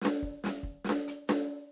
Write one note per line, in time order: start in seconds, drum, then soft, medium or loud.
0.02 snare medium
0.05 snare loud
0.23 kick soft
0.44 snare medium
0.46 snare loud
0.63 kick soft
0.85 snare medium
0.89 snare loud
1.08 closed hi-hat loud
1.28 snare loud
1.28 hi-hat pedal loud